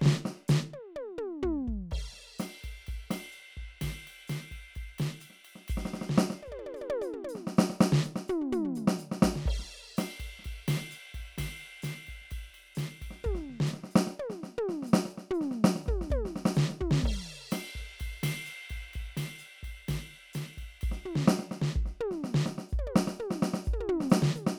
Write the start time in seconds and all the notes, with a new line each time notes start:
0.01 snare, hi-hat pedal
0.06 snare
0.13 snare
0.26 snare
0.32 snare
0.37 snare
0.49 snare, hi-hat pedal
0.74 high tom
0.96 high tom
1.18 mid tom
1.43 kick, floor tom
1.68 kick
1.74 kick
1.92 kick, crash
1.99 kick
2.14 snare
2.39 snare, hi-hat pedal, ride
2.64 kick, snare, ride
2.87 kick, ride
2.94 kick
3.11 snare, ride
3.33 hi-hat pedal
3.58 kick
3.63 kick
3.81 kick, snare, hi-hat pedal, ride
3.89 kick
4.08 ride
4.28 snare, hi-hat pedal, ride
4.52 kick, ride
4.74 kick, hi-hat pedal, ride
4.99 snare, ride
5.21 hi-hat pedal, ride
5.31 snare
5.45 ride
5.56 snare
5.69 kick, hi-hat pedal, ride
5.76 kick, snare
5.86 snare
5.94 snare
6.02 snare
6.10 snare
6.19 snare
6.31 snare
6.43 hi-hat pedal, high tom
6.48 kick, high tom
6.59 high tom
6.67 high tom
6.75 hi-hat pedal, high tom
6.82 high tom
6.90 high tom
7.02 hi-hat pedal, high tom
7.14 mid tom
7.25 high tom
7.30 hi-hat pedal
7.36 snare
7.48 snare
7.58 snare, hi-hat pedal
7.70 snare
7.81 snare, hi-hat pedal
7.93 snare
8.04 snare, hi-hat pedal
8.16 snare
8.29 hi-hat pedal, floor tom
8.42 floor tom
8.53 hi-hat pedal, floor tom
8.65 floor tom
8.76 floor tom, hi-hat pedal
8.88 snare
9.00 hi-hat pedal
9.12 snare
9.23 kick, snare, hi-hat pedal
9.29 kick
9.36 snare
9.46 kick, hi-hat pedal, crash
9.57 kick, snare
9.98 snare, hi-hat pedal, ride
10.20 kick, ride
10.25 kick
10.40 snare
10.45 kick, hi-hat pedal, ride
10.69 snare, ride
10.78 snare
10.92 hi-hat pedal, ride
11.15 kick, ride
11.20 kick
11.39 kick, snare, hi-hat pedal, ride
11.45 kick
11.60 ride
11.83 snare, hi-hat pedal, ride
12.08 kick, ride
12.22 snare
12.31 kick, hi-hat pedal, ride
12.55 ride
12.76 snare, hi-hat pedal, ride
13.02 kick, ride
13.07 kick
13.11 snare
13.24 kick, hi-hat pedal, mid tom
13.33 kick, snare
13.50 snare
13.61 snare
13.67 snare, hi-hat pedal
13.74 snare
13.84 snare
13.92 hi-hat pedal
13.96 snare
14.08 snare
14.20 high tom
14.31 snare
14.44 snare
14.58 mid tom
14.70 snare
14.83 snare
14.87 hi-hat pedal
14.94 snare
15.06 snare, hi-hat pedal
15.18 snare
15.31 hi-hat pedal, floor tom
15.42 snare
15.65 snare
15.76 snare
15.84 snare, hi-hat pedal
15.88 kick, mid tom
15.98 kick, snare
16.10 kick, hi-hat pedal, high tom
16.26 snare
16.37 snare
16.46 snare
16.55 snare, hi-hat pedal
16.70 snare
16.81 kick, floor tom
16.88 kick
16.92 snare
17.01 kick, hi-hat pedal
17.05 crash
17.11 kick
17.23 snare
17.52 snare, hi-hat pedal, ride
17.72 kick, hi-hat pedal
17.81 kick
17.85 snare
17.99 kick, hi-hat pedal, ride
18.07 kick
18.24 snare, ride
18.46 hi-hat pedal, ride
18.70 kick, ride
18.77 kick
18.94 kick, hi-hat pedal, ride
19.02 kick
19.18 snare, ride
19.39 hi-hat pedal, ride
19.64 kick, ride
19.69 kick
19.88 kick, snare, hi-hat pedal, ride
19.95 kick
20.34 snare, hi-hat pedal, ride
20.58 kick, ride
20.63 kick
20.82 kick, hi-hat pedal, ride
20.91 kick, snare
21.06 floor tom
21.16 snare
21.28 snare
21.40 snare
21.52 snare
21.62 snare
21.76 kick
21.84 kick, snare
22.01 mid tom
22.12 snare
22.25 snare
22.35 snare
22.47 snare
22.59 snare
22.70 kick, hi-hat pedal
22.79 kick, high tom
22.87 high tom
22.97 snare
23.08 snare
23.15 hi-hat pedal
23.20 mid tom
23.31 snare
23.39 hi-hat pedal
23.43 snare
23.54 snare
23.66 kick, hi-hat pedal
23.74 kick, mid tom
23.81 mid tom
23.88 kick, floor tom
24.01 snare
24.11 snare, hi-hat pedal
24.23 snare
24.36 hi-hat pedal, mid tom
24.47 snare